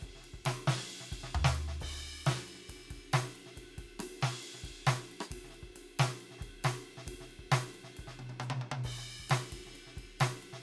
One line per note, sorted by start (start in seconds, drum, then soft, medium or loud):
0.01 kick soft
0.01 hi-hat pedal medium
0.01 ride medium
0.09 kick soft
0.16 snare soft
0.20 snare soft
0.25 ride medium
0.34 kick soft
0.40 kick soft
0.45 snare medium
0.45 hi-hat pedal soft
0.45 ride loud
0.68 snare loud
0.68 ride loud
0.91 hi-hat pedal soft
0.91 ride medium
1.01 snare soft
1.13 kick medium
1.13 ride medium
1.20 kick soft
1.24 snare medium
1.35 hi-hat pedal soft
1.35 floor tom loud
1.45 snare loud
1.56 ride medium
1.69 snare medium
1.80 kick soft
1.80 hi-hat pedal soft
1.80 crash loud
1.89 kick soft
1.89 snare soft
1.98 snare soft
2.27 snare loud
2.27 hi-hat pedal soft
2.27 ride loud
2.49 ride medium
2.55 snare soft
2.69 kick soft
2.69 hi-hat pedal soft
2.69 ride medium
2.77 snare soft
2.81 snare soft
2.85 snare soft
2.91 kick soft
2.91 ride medium
2.97 kick soft
3.13 snare loud
3.13 hi-hat pedal medium
3.13 ride loud
3.23 snare soft
3.36 ride soft
3.47 snare soft
3.57 kick soft
3.57 hi-hat pedal soft
3.57 ride medium
3.64 snare soft
3.67 snare soft
3.70 snare soft
3.73 snare soft
3.79 kick soft
3.79 ride medium
3.85 kick soft
4.00 cross-stick medium
4.00 hi-hat pedal soft
4.00 ride loud
4.22 snare loud
4.22 ride loud
4.44 hi-hat pedal soft
4.44 ride medium
4.55 snare soft
4.64 kick soft
4.64 ride medium
4.70 kick soft
4.86 snare loud
4.86 hi-hat pedal soft
4.86 ride loud
4.96 snare soft
5.12 ride soft
5.21 cross-stick medium
5.29 kick soft
5.29 hi-hat pedal soft
5.29 ride loud
5.38 kick soft
5.40 kick soft
5.45 snare soft
5.51 snare soft
5.55 ride soft
5.63 kick soft
5.76 hi-hat pedal soft
5.76 ride medium
6.00 snare loud
6.00 ride loud
6.08 snare soft
6.18 hi-hat pedal soft
6.18 ride soft
6.32 snare soft
6.39 kick soft
6.39 snare soft
6.43 ride medium
6.48 kick soft
6.63 snare loud
6.63 hi-hat pedal medium
6.63 ride loud
6.89 ride soft
6.98 snare soft
7.06 kick soft
7.06 hi-hat pedal medium
7.06 ride loud
7.14 kick soft
7.21 snare soft
7.32 ride soft
7.40 kick soft
7.52 snare loud
7.52 hi-hat pedal soft
7.52 ride loud
7.75 ride soft
7.84 snare soft
7.98 kick soft
7.98 hi-hat pedal soft
7.98 ride medium
8.05 kick soft
8.05 snare medium
8.20 high tom medium
8.30 high tom medium
8.41 hi-hat pedal medium
8.41 high tom loud
8.51 high tom loud
8.62 high tom medium
8.72 high tom loud
8.85 kick soft
8.85 hi-hat pedal medium
8.85 crash loud
8.92 kick soft
8.99 snare soft
9.04 snare soft
9.20 kick soft
9.30 snare loud
9.30 hi-hat pedal medium
9.30 ride loud
9.53 kick soft
9.53 ride medium
9.59 kick soft
9.67 snare soft
9.74 hi-hat pedal medium
9.74 ride soft
9.87 snare soft
9.97 kick soft
9.97 snare soft
9.97 ride medium
10.20 snare loud
10.20 hi-hat pedal medium
10.20 ride loud
10.43 ride medium
10.53 snare medium